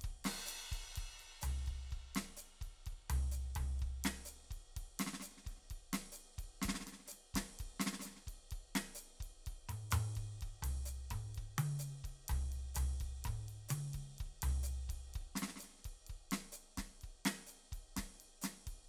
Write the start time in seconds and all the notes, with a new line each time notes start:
0.01 kick, ride
0.09 kick
0.24 snare, crash
0.46 hi-hat pedal, ride
0.71 kick, ride
0.77 kick
0.95 kick, ride
1.03 kick
1.19 ride
1.41 floor tom, hi-hat pedal, ride
1.66 kick, ride
1.73 kick
1.91 kick, ride
1.97 kick
2.15 snare, ride
2.36 hi-hat pedal, ride
2.61 kick, ride
2.66 kick
2.86 kick, ride
2.92 kick
3.10 floor tom, ride
3.31 hi-hat pedal, ride
3.55 kick, floor tom, ride
3.79 kick, ride
3.87 kick
4.04 snare, ride
4.25 hi-hat pedal, ride
4.50 kick, ride
4.56 kick
4.76 kick, ride
4.81 kick
4.99 snare, ride
5.06 snare
5.13 snare
5.20 snare, hi-hat pedal
5.25 snare
5.30 snare
5.37 snare
5.43 kick, snare, ride
5.50 snare
5.56 snare
5.61 snare
5.64 snare
5.67 kick, snare, ride
5.93 snare, ride
6.12 hi-hat pedal
6.16 ride
6.38 kick, ride
6.43 kick
6.61 kick, snare, ride
6.68 kick, snare
6.74 snare
6.80 snare
6.86 snare, ride
6.92 snare
6.99 snare
7.05 snare, hi-hat pedal
7.11 snare, ride
7.34 kick, snare, ride
7.39 kick
7.59 kick, ride
7.65 kick
7.79 snare, ride
7.86 snare
7.93 snare
7.99 snare, hi-hat pedal, ride
8.05 snare
8.10 snare
8.16 snare
8.21 snare
8.26 kick, snare, ride
8.30 snare
8.34 snare
8.37 snare
8.41 snare
8.51 kick, ride
8.75 snare, ride
8.95 hi-hat pedal
8.99 ride
9.20 kick, ride
9.25 kick
9.46 kick, ride
9.52 kick
9.69 mid tom, ride
9.90 hi-hat pedal, mid tom, ride
10.15 kick, ride
10.22 kick
10.41 kick, ride
10.48 kick
10.62 floor tom, ride
10.85 hi-hat pedal, ride
11.10 kick, mid tom, ride
11.17 kick
11.34 kick, ride
11.43 kick
11.58 high tom, ride
11.79 hi-hat pedal, ride
12.04 kick, ride
12.09 kick
12.28 kick, floor tom, ride
12.52 ride
12.74 floor tom, hi-hat pedal, ride
13.00 kick, ride
13.06 kick
13.24 kick, mid tom, ride
13.32 kick
13.48 ride
13.68 hi-hat pedal, high tom, ride
13.93 kick, ride
13.99 kick
14.18 kick, ride
14.25 kick
14.42 floor tom, ride
14.63 hi-hat pedal, ride
14.89 kick, ride
14.94 kick
15.14 kick, ride
15.21 kick
15.35 snare, ride
15.42 snare
15.48 snare
15.56 snare, hi-hat pedal
15.60 snare, ride
15.68 snare
15.73 snare
15.78 snare
15.83 kick, snare, ride
15.86 snare
15.91 snare
16.06 kick, ride
16.15 kick
16.31 snare, ride
16.52 hi-hat pedal, ride
16.77 kick, snare, ride
17.01 kick, ride
17.25 snare, ride
17.46 hi-hat pedal, ride
17.72 kick, ride
17.77 kick
17.96 kick, snare, ride
18.03 kick
18.14 snare
18.20 ride
18.41 snare, hi-hat pedal, ride
18.67 kick, ride
18.72 kick